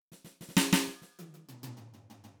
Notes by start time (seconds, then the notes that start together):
0.12 snare
0.24 snare
0.41 snare
0.49 snare
0.57 snare
0.73 snare
0.82 hi-hat pedal
0.87 snare
1.02 snare
1.19 high tom
1.34 high tom
1.49 mid tom
1.63 mid tom
1.77 floor tom
1.94 floor tom
2.10 floor tom
2.24 floor tom